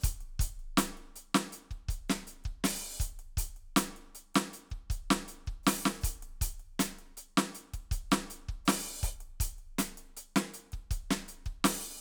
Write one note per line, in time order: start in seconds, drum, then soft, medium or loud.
0.01 closed hi-hat loud
0.01 kick medium
0.01 hi-hat pedal medium
0.21 closed hi-hat soft
0.40 closed hi-hat loud
0.40 kick medium
0.59 closed hi-hat soft
0.78 closed hi-hat loud
0.78 snare loud
0.97 closed hi-hat soft
1.16 closed hi-hat medium
1.35 snare loud
1.35 closed hi-hat soft
1.53 closed hi-hat medium
1.71 kick soft
1.71 closed hi-hat soft
1.89 closed hi-hat medium
1.89 kick medium
2.09 snare loud
2.09 closed hi-hat soft
2.27 closed hi-hat medium
2.44 kick medium
2.44 closed hi-hat soft
2.64 open hi-hat loud
2.64 snare loud
3.00 closed hi-hat loud
3.00 kick medium
3.00 hi-hat pedal medium
3.19 closed hi-hat soft
3.37 closed hi-hat loud
3.37 kick medium
3.56 closed hi-hat soft
3.76 closed hi-hat loud
3.76 snare loud
3.96 closed hi-hat soft
4.15 closed hi-hat medium
4.35 snare loud
4.35 closed hi-hat soft
4.53 closed hi-hat medium
4.71 kick soft
4.71 closed hi-hat soft
4.90 closed hi-hat medium
4.90 kick medium
5.10 snare loud
5.10 closed hi-hat soft
5.28 closed hi-hat medium
5.47 kick medium
5.47 closed hi-hat soft
5.63 open hi-hat loud
5.63 snare loud
5.63 hi-hat pedal soft
5.86 snare loud
6.01 closed hi-hat loud
6.01 kick medium
6.01 hi-hat pedal medium
6.23 closed hi-hat soft
6.41 closed hi-hat loud
6.41 kick medium
6.60 closed hi-hat soft
6.80 closed hi-hat loud
6.80 snare loud
6.99 closed hi-hat soft
7.17 closed hi-hat medium
7.38 snare loud
7.55 closed hi-hat medium
7.74 kick soft
7.74 closed hi-hat medium
7.91 closed hi-hat medium
7.91 kick medium
8.12 snare loud
8.12 closed hi-hat medium
8.30 closed hi-hat medium
8.49 kick medium
8.49 closed hi-hat soft
8.65 open hi-hat loud
8.65 snare loud
8.65 hi-hat pedal soft
9.03 open hi-hat loud
9.03 kick medium
9.03 hi-hat pedal medium
9.21 closed hi-hat soft
9.40 closed hi-hat loud
9.40 kick medium
9.58 closed hi-hat soft
9.79 closed hi-hat loud
9.79 snare loud
9.98 closed hi-hat medium
10.17 closed hi-hat medium
10.36 snare loud
10.36 closed hi-hat soft
10.54 closed hi-hat medium
10.72 kick soft
10.72 closed hi-hat soft
10.91 closed hi-hat medium
10.91 kick medium
11.11 snare loud
11.11 closed hi-hat soft
11.28 closed hi-hat medium
11.46 kick medium
11.46 closed hi-hat soft
11.64 open hi-hat loud
11.64 snare loud